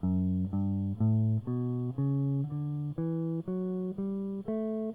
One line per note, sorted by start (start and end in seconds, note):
0.06 0.49 F#2
0.55 0.97 G2
1.03 1.42 A2
1.49 1.94 B2
2.00 2.46 C#3
2.51 2.95 D3
2.99 3.44 E3
3.49 3.96 F#3
4.00 4.45 G3
4.49 4.93 A3